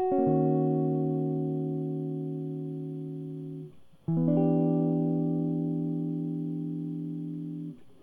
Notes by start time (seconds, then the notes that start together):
0.00 F#4
0.12 C#4
0.19 A#3
0.28 D#3
4.09 E3
4.17 B3
4.28 D4
4.37 G4